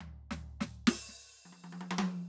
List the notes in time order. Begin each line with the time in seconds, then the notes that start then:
0.02 floor tom
0.31 snare, floor tom
0.60 snare, floor tom
0.87 open hi-hat, snare
1.08 snare
1.45 high tom
1.52 high tom
1.64 high tom
1.72 high tom
1.81 high tom
1.91 high tom
1.98 high tom